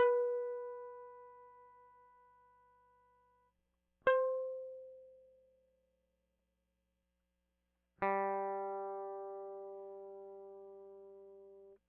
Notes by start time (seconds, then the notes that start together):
0.00 B4
4.07 C5
8.03 G3